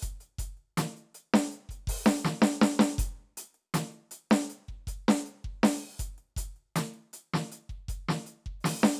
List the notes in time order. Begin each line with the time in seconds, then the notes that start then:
0.01 closed hi-hat, kick, hi-hat pedal
0.20 closed hi-hat
0.38 closed hi-hat, kick
0.57 closed hi-hat
0.77 closed hi-hat, snare
0.96 closed hi-hat
1.14 closed hi-hat
1.34 closed hi-hat, snare
1.51 closed hi-hat
1.69 closed hi-hat, kick
1.87 open hi-hat, kick
2.06 snare
2.25 snare, hi-hat pedal
2.42 snare
2.61 snare
2.79 snare
2.98 closed hi-hat, kick
3.37 closed hi-hat
3.54 closed hi-hat
3.74 closed hi-hat, snare
3.92 closed hi-hat
4.11 closed hi-hat
4.30 snare, closed hi-hat
4.49 closed hi-hat
4.68 kick, closed hi-hat
4.87 closed hi-hat, kick
5.08 closed hi-hat, snare
5.25 closed hi-hat
5.44 kick, closed hi-hat
5.63 open hi-hat, snare
5.98 closed hi-hat, kick, hi-hat pedal
6.18 closed hi-hat
6.36 closed hi-hat, kick
6.56 closed hi-hat
6.76 closed hi-hat, snare
6.94 closed hi-hat
7.13 closed hi-hat
7.33 snare, closed hi-hat
7.52 closed hi-hat
7.69 kick, closed hi-hat
7.88 closed hi-hat, kick
8.08 snare
8.26 closed hi-hat
8.46 kick, closed hi-hat
8.60 snare, hi-hat pedal
8.65 open hi-hat
8.83 snare